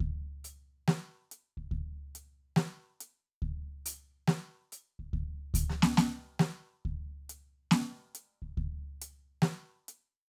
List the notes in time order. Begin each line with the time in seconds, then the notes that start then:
0.01 kick
0.45 closed hi-hat
0.88 snare
1.32 closed hi-hat
1.58 kick
1.72 kick, snare, crash
2.16 closed hi-hat
2.57 snare
3.01 closed hi-hat
3.43 kick
3.86 closed hi-hat
4.28 snare
4.73 closed hi-hat
5.00 kick
5.14 kick, snare, crash, ride
5.55 closed hi-hat, kick
5.70 snare
5.83 snare
5.98 snare
6.40 snare
6.86 kick
7.30 closed hi-hat
7.72 snare
8.16 closed hi-hat
8.43 kick
8.58 kick
9.02 closed hi-hat
9.43 snare
9.89 closed hi-hat